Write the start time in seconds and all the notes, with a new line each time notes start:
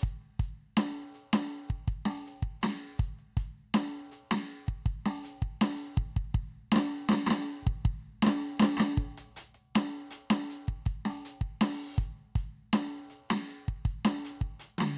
0.02 closed hi-hat, kick, hi-hat pedal
0.22 closed hi-hat
0.40 closed hi-hat, kick
0.78 closed hi-hat, snare
0.97 closed hi-hat
1.15 closed hi-hat
1.34 snare, closed hi-hat
1.51 closed hi-hat
1.70 kick, closed hi-hat
1.88 closed hi-hat, kick
2.06 snare
2.27 closed hi-hat
2.43 kick
2.62 open hi-hat, snare, hi-hat pedal
2.99 closed hi-hat, kick, hi-hat pedal
3.20 closed hi-hat
3.38 closed hi-hat, kick
3.75 closed hi-hat, snare
3.94 closed hi-hat
4.12 closed hi-hat
4.32 snare, closed hi-hat
4.49 closed hi-hat
4.68 kick, closed hi-hat
4.87 closed hi-hat, kick
5.07 snare
5.25 closed hi-hat
5.43 kick
5.62 open hi-hat, snare
5.97 kick, hi-hat pedal
6.17 kick
6.25 kick
6.35 kick
6.73 snare
6.77 snare
7.10 snare
7.12 snare
7.27 snare
7.31 snare
7.63 kick
7.68 kick
7.86 kick
7.90 crash, ride
8.23 snare
8.28 snare
8.60 snare
8.63 snare
8.78 snare
8.81 snare
8.98 kick
9.18 closed hi-hat
9.37 closed hi-hat
9.55 closed hi-hat
9.76 closed hi-hat, snare
9.94 closed hi-hat
10.11 closed hi-hat
10.31 snare
10.51 closed hi-hat
10.68 kick, closed hi-hat
10.86 closed hi-hat, kick
11.06 snare
11.26 closed hi-hat
11.42 kick
11.62 open hi-hat, snare
11.98 closed hi-hat, kick, hi-hat pedal
12.18 closed hi-hat
12.36 closed hi-hat, kick
12.74 closed hi-hat, snare
13.11 closed hi-hat
13.30 snare, closed hi-hat
13.49 closed hi-hat
13.66 kick, closed hi-hat
13.86 closed hi-hat, kick
14.06 snare
14.25 closed hi-hat
14.42 kick, closed hi-hat
14.60 closed hi-hat
14.79 snare, high tom